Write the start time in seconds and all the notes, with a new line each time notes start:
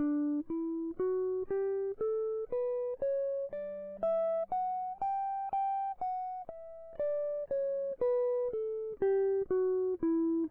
0.00 D4
0.51 E4
1.00 F#4
1.51 G4
2.01 A4
2.52 B4
3.02 C#5
3.55 D5
4.03 E5
4.52 F#5
5.02 G5
5.53 G5
6.01 F#5
6.49 E5
7.00 D5
7.51 C#5
8.01 B4
8.55 A4
9.02 G4
9.51 F#4
10.03 E4